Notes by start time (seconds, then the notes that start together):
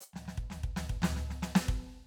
0.01 hi-hat pedal
0.13 snare, floor tom
0.26 snare, floor tom
0.38 kick
0.50 snare, floor tom
0.63 kick
0.76 snare, floor tom
0.90 kick
1.02 snare, floor tom
1.16 snare
1.30 snare
1.43 snare
1.55 snare
1.68 kick